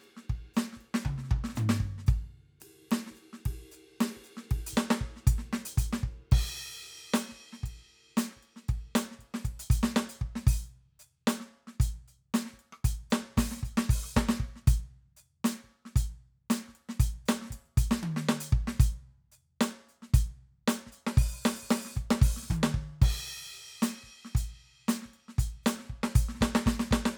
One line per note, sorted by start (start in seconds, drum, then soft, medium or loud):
0.01 hi-hat pedal soft
0.01 ride soft
0.17 snare soft
0.30 kick medium
0.30 ride bell soft
0.54 snare loud
0.54 hi-hat pedal soft
0.54 ride bell soft
0.73 kick soft
0.73 snare soft
0.81 ride bell soft
0.94 snare loud
1.05 kick medium
1.05 mid tom loud
1.18 snare soft
1.24 snare soft
1.28 kick loud
1.28 snare soft
1.28 mid tom medium
1.44 snare medium
1.49 snare medium
1.54 kick soft
1.54 snare soft
1.54 floor tom loud
1.54 hi-hat pedal medium
1.69 snare loud
1.80 kick medium
1.98 snare soft
2.07 kick loud
2.07 hi-hat pedal medium
2.07 ride bell soft
2.60 hi-hat pedal soft
2.60 ride medium
2.91 snare loud
2.91 ride medium
3.07 snare soft
3.11 kick soft
3.15 hi-hat pedal soft
3.15 ride soft
3.33 snare soft
3.46 kick medium
3.46 ride medium
3.72 hi-hat pedal medium
4.01 snare loud
4.01 ride loud
4.17 kick soft
4.24 hi-hat pedal soft
4.37 snare medium
4.51 kick medium
4.51 ride medium
4.67 closed hi-hat loud
4.73 kick soft
4.73 hi-hat pedal medium
4.77 snare loud
4.91 snare loud
5.01 kick medium
5.16 snare soft
5.27 kick loud
5.27 closed hi-hat loud
5.38 snare soft
5.53 snare loud
5.65 closed hi-hat loud
5.78 closed hi-hat loud
5.78 kick loud
5.93 snare loud
6.03 kick medium
6.32 kick loud
6.32 crash loud
7.14 closed hi-hat loud
7.14 snare loud
7.29 kick soft
7.29 snare soft
7.53 snare soft
7.64 kick medium
7.64 closed hi-hat medium
8.17 closed hi-hat loud
8.17 snare loud
8.31 snare soft
8.37 kick soft
8.43 closed hi-hat soft
8.56 snare soft
8.69 kick medium
8.69 closed hi-hat medium
8.95 closed hi-hat loud
8.95 snare loud
9.11 snare soft
9.19 kick soft
9.19 closed hi-hat soft
9.34 snare medium
9.39 snare soft
9.45 kick medium
9.45 closed hi-hat medium
9.60 closed hi-hat loud
9.70 closed hi-hat loud
9.70 kick loud
9.83 snare loud
9.96 snare loud
10.09 closed hi-hat medium
10.21 kick medium
10.36 snare medium
10.47 open hi-hat loud
10.47 kick loud
11.00 hi-hat pedal medium
11.27 closed hi-hat loud
11.27 snare loud
11.40 snare soft
11.67 snare soft
11.80 closed hi-hat loud
11.80 kick loud
12.08 closed hi-hat soft
12.34 closed hi-hat loud
12.34 snare loud
12.46 snare soft
12.48 snare soft
12.51 kick soft
12.51 snare soft
12.59 closed hi-hat soft
12.73 cross-stick medium
12.85 closed hi-hat loud
12.85 kick loud
13.11 kick soft
13.11 snare loud
13.11 hi-hat pedal medium
13.37 open hi-hat loud
13.37 kick medium
13.37 snare loud
13.51 snare medium
13.57 snare soft
13.57 hi-hat pedal soft
13.62 closed hi-hat medium
13.62 kick medium
13.62 snare soft
13.77 snare loud
13.90 open hi-hat loud
13.90 kick loud
14.03 cross-stick soft
14.13 kick medium
14.13 snare loud
14.13 hi-hat pedal soft
14.29 snare loud
14.40 kick medium
14.56 snare soft
14.67 closed hi-hat loud
14.67 kick loud
15.17 hi-hat pedal medium
15.45 closed hi-hat loud
15.45 snare loud
15.64 kick soft
15.86 snare soft
15.96 closed hi-hat loud
15.96 kick loud
16.50 closed hi-hat loud
16.50 snare loud
16.68 kick soft
16.68 snare soft
16.75 closed hi-hat soft
16.89 snare medium
17.00 closed hi-hat loud
17.00 kick loud
17.26 closed hi-hat loud
17.26 snare loud
17.26 hi-hat pedal soft
17.42 snare soft
17.45 snare soft
17.51 kick soft
17.51 closed hi-hat medium
17.66 closed hi-hat soft
17.77 closed hi-hat loud
17.77 kick loud
17.91 snare loud
18.03 high tom loud
18.17 snare medium
18.29 snare loud
18.41 closed hi-hat loud
18.53 kick loud
18.68 snare medium
18.80 closed hi-hat loud
18.80 kick loud
19.32 hi-hat pedal soft
19.61 closed hi-hat loud
19.61 snare loud
19.89 closed hi-hat soft
20.02 snare soft
20.14 closed hi-hat loud
20.14 kick loud
20.68 closed hi-hat loud
20.68 snare loud
20.86 kick soft
20.86 snare soft
20.92 closed hi-hat medium
21.07 snare medium
21.17 open hi-hat loud
21.17 kick loud
21.45 open hi-hat loud
21.45 snare loud
21.63 kick soft
21.71 open hi-hat loud
21.71 snare loud
21.85 snare soft
21.90 snare soft
21.90 hi-hat pedal soft
21.95 closed hi-hat soft
21.95 kick medium
21.95 snare soft
22.11 snare loud
22.22 open hi-hat loud
22.22 kick loud
22.37 snare soft
22.43 snare soft
22.47 kick medium
22.47 snare soft
22.51 hi-hat pedal medium
22.51 high tom loud
22.63 snare loud
22.74 kick medium
22.98 kick soft
23.02 kick loud
23.02 hi-hat pedal medium
23.02 crash loud
23.53 hi-hat pedal soft
23.82 closed hi-hat loud
23.82 snare loud
24.04 kick soft
24.25 snare soft
24.35 closed hi-hat loud
24.35 kick medium
24.88 closed hi-hat loud
24.88 snare loud
25.02 kick soft
25.02 snare soft
25.14 closed hi-hat soft
25.28 snare soft
25.38 closed hi-hat loud
25.38 kick loud
25.63 closed hi-hat loud
25.63 snare loud
25.63 hi-hat pedal soft
25.79 snare soft
25.82 snare soft
25.85 snare soft
25.90 kick soft
26.04 snare loud
26.15 open hi-hat loud
26.15 kick loud
26.29 snare medium
26.35 snare soft
26.38 snare soft
26.40 kick medium
26.40 snare soft
26.42 snare loud
26.55 snare loud
26.66 kick medium
26.66 snare loud
26.80 snare loud
26.91 kick medium
26.91 snare loud
27.06 snare loud